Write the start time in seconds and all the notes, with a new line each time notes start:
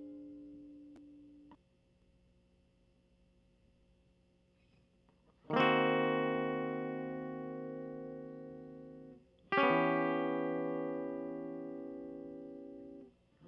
5.51 D#3 A#3
5.56 C4 F#4
9.52 G4
9.57 C#4
9.63 B3
9.71 E3